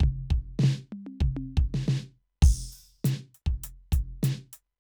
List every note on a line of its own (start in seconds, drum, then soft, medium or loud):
0.01 kick medium
0.01 floor tom loud
0.31 kick medium
0.60 snare loud
0.64 snare loud
0.93 mid tom medium
1.07 high tom medium
1.21 kick medium
1.21 floor tom loud
1.37 high tom loud
1.58 kick medium
1.75 snare loud
1.89 snare loud
2.43 kick loud
2.43 crash loud
2.73 open hi-hat soft
3.05 closed hi-hat loud
3.05 snare loud
3.35 closed hi-hat soft
3.47 kick medium
3.64 closed hi-hat loud
3.93 closed hi-hat loud
3.93 kick medium
4.24 closed hi-hat loud
4.24 snare loud
4.54 closed hi-hat medium